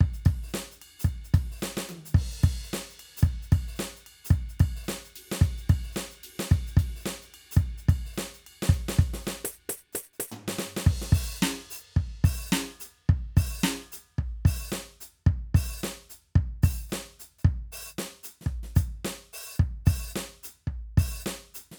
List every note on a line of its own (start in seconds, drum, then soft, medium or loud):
0.01 kick loud
0.14 closed hi-hat medium
0.26 kick loud
0.26 ride medium
0.26 floor tom soft
0.43 open hi-hat medium
0.49 hi-hat pedal medium
0.54 snare loud
0.71 closed hi-hat medium
0.82 ride bell loud
1.00 closed hi-hat loud
1.05 kick loud
1.24 closed hi-hat medium
1.34 kick loud
1.34 ride medium
1.34 floor tom soft
1.51 open hi-hat medium
1.59 hi-hat pedal medium
1.63 snare loud
1.77 snare loud
1.89 high tom loud
2.05 closed hi-hat loud
2.15 kick loud
2.15 crash loud
2.31 closed hi-hat medium
2.44 kick loud
2.44 ride bell loud
2.63 open hi-hat medium
2.63 hi-hat pedal medium
2.74 snare loud
2.90 closed hi-hat medium
3.00 ride bell loud
3.17 closed hi-hat loud
3.23 kick loud
3.42 closed hi-hat medium
3.53 kick loud
3.53 ride bell loud
3.67 open hi-hat medium
3.76 snare loud
3.76 hi-hat pedal medium
3.96 closed hi-hat medium
4.07 ride bell medium
4.25 closed hi-hat loud
4.31 kick loud
4.49 closed hi-hat medium
4.60 kick loud
4.60 ride bell loud
4.76 open hi-hat medium
4.84 hi-hat pedal medium
4.89 snare loud
5.05 closed hi-hat medium
5.16 ride loud
5.32 snare loud
5.42 kick loud
5.42 ride medium
5.58 closed hi-hat medium
5.70 kick loud
5.70 ride bell loud
5.83 open hi-hat medium
5.93 snare loud
5.93 hi-hat pedal medium
6.11 closed hi-hat medium
6.24 ride loud
6.40 snare loud
6.52 kick loud
6.52 ride medium
6.67 closed hi-hat medium
6.77 kick loud
6.77 ride loud
6.96 open hi-hat medium
7.01 hi-hat pedal medium
7.06 snare loud
7.22 closed hi-hat medium
7.34 ride bell medium
7.51 closed hi-hat loud
7.57 kick loud
7.78 closed hi-hat medium
7.89 kick loud
7.89 ride bell loud
8.05 open hi-hat medium
8.14 hi-hat pedal medium
8.18 snare loud
8.34 closed hi-hat medium
8.47 ride bell medium
8.63 snare loud
8.70 kick loud
8.70 ride medium
8.89 snare loud
8.99 kick loud
8.99 ride bell medium
9.14 snare medium
9.23 hi-hat pedal soft
9.27 snare loud
9.45 high tom loud
9.50 hi-hat pedal medium
9.70 hi-hat pedal medium
9.70 high tom loud
9.93 hi-hat pedal medium
9.93 high tom loud
10.14 hi-hat pedal soft
10.20 high tom loud
10.32 floor tom loud
10.48 snare loud
10.59 snare loud
10.59 hi-hat pedal soft
10.77 snare loud
10.87 kick loud
10.87 crash loud
11.02 snare medium
11.13 open hi-hat loud
11.13 kick loud
11.38 hi-hat pedal medium
11.43 snare loud
11.70 open hi-hat loud
11.74 hi-hat pedal soft
11.97 kick loud
12.24 open hi-hat loud
12.24 kick loud
12.49 snare loud
12.49 hi-hat pedal medium
12.80 closed hi-hat loud
13.10 kick loud
13.37 open hi-hat loud
13.37 kick loud
13.62 snare loud
13.62 hi-hat pedal medium
13.92 closed hi-hat loud
14.19 kick medium
14.46 open hi-hat loud
14.46 kick loud
14.70 snare loud
14.70 hi-hat pedal medium
15.01 closed hi-hat loud
15.27 kick loud
15.55 open hi-hat loud
15.55 kick loud
15.80 snare loud
15.80 hi-hat pedal medium
16.10 closed hi-hat loud
16.36 kick loud
16.63 open hi-hat loud
16.63 kick loud
16.90 snare loud
16.90 hi-hat pedal medium
17.20 closed hi-hat loud
17.39 hi-hat pedal medium
17.45 kick loud
17.72 open hi-hat loud
17.90 hi-hat pedal medium
17.99 snare loud
18.24 closed hi-hat loud
18.42 snare soft
18.47 kick medium
18.64 snare soft
18.76 closed hi-hat loud
18.76 kick loud
19.05 snare loud
19.33 open hi-hat loud
19.55 hi-hat pedal medium
19.60 kick loud
19.86 open hi-hat loud
19.86 kick loud
20.11 hi-hat pedal medium
20.16 snare loud
20.43 closed hi-hat loud
20.68 kick medium
20.98 open hi-hat loud
20.98 kick loud
21.22 hi-hat pedal medium
21.26 snare loud
21.55 closed hi-hat loud
21.72 snare medium